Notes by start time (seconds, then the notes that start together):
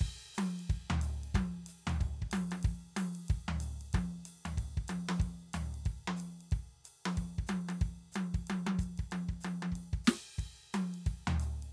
0.01 kick
0.05 ride
0.34 hi-hat pedal
0.38 high tom, ride
0.59 ride
0.70 kick, ride
0.90 floor tom
1.01 hi-hat pedal, ride
1.24 ride
1.34 kick, high tom, ride
1.66 hi-hat pedal, ride
1.87 floor tom, ride
2.01 kick, ride
2.22 kick
2.31 hi-hat pedal, high tom, ride
2.42 kick
2.51 high tom, ride
2.63 kick, ride
2.97 hi-hat pedal, high tom, ride
3.15 ride
3.28 kick, ride
3.48 floor tom
3.60 hi-hat pedal, ride
3.81 ride
3.93 kick, high tom, ride
4.25 hi-hat pedal, ride
4.45 floor tom, ride
4.57 kick, ride
4.77 kick
4.88 hi-hat pedal, high tom, ride
5.09 high tom, ride
5.20 kick, ride
5.53 floor tom, hi-hat pedal, ride
5.74 ride
5.86 kick, ride
6.08 high tom
6.16 hi-hat pedal, ride
6.41 ride
6.51 kick, ride
6.84 hi-hat pedal, ride
7.06 high tom, ride
7.17 kick, ride
7.38 kick
7.47 hi-hat pedal, high tom, ride
7.69 high tom, ride
7.81 kick, ride
8.12 kick, hi-hat pedal, ride
8.16 high tom
8.34 kick, ride
8.47 high tom, ride
8.67 high tom
8.79 kick, hi-hat pedal, ride
8.98 kick, ride
9.11 high tom, ride
9.29 kick
9.41 hi-hat pedal, high tom, ride
9.62 high tom
9.72 kick, ride
9.93 kick
10.04 snare, hi-hat pedal, crash
10.38 kick, ride
10.73 hi-hat pedal, high tom, ride
10.94 ride
11.06 kick, ride
11.27 floor tom
11.40 hi-hat pedal, ride
11.63 ride